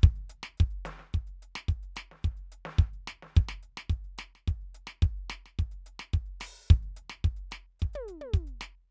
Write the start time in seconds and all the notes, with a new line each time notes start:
0.01 kick, closed hi-hat, hi-hat pedal
0.07 snare
0.16 closed hi-hat
0.30 closed hi-hat
0.44 snare
0.58 kick, closed hi-hat
0.71 closed hi-hat
0.86 closed hi-hat, snare
1.00 snare
1.14 kick, closed hi-hat
1.28 closed hi-hat
1.43 closed hi-hat
1.56 snare
1.69 kick, closed hi-hat
1.84 closed hi-hat
1.97 closed hi-hat, snare
2.12 snare
2.23 kick, closed hi-hat, hi-hat pedal
2.33 snare
2.38 closed hi-hat
2.53 closed hi-hat
2.66 snare
2.79 kick, closed hi-hat
2.94 closed hi-hat
3.08 closed hi-hat, kick, snare
3.23 snare
3.36 kick, closed hi-hat
3.50 snare, closed hi-hat
3.64 closed hi-hat
3.78 snare
3.91 kick, closed hi-hat
4.05 closed hi-hat
4.19 closed hi-hat, snare
4.36 snare
4.48 kick, closed hi-hat
4.62 closed hi-hat
4.75 closed hi-hat
4.88 snare
5.03 kick, closed hi-hat
5.18 closed hi-hat
5.31 closed hi-hat, snare
5.47 snare
5.60 kick, closed hi-hat
5.72 closed hi-hat
5.87 closed hi-hat
6.00 snare
6.14 kick, closed hi-hat
6.27 closed hi-hat
6.41 open hi-hat, snare
6.69 kick, closed hi-hat, hi-hat pedal
6.83 closed hi-hat
6.97 closed hi-hat
7.11 snare
7.25 kick, closed hi-hat
7.37 closed hi-hat
7.52 closed hi-hat, snare
7.80 kick, closed hi-hat
7.94 closed hi-hat, high tom
8.09 kick, closed hi-hat
8.22 high tom
8.34 kick, closed hi-hat
8.48 closed hi-hat
8.62 closed hi-hat, snare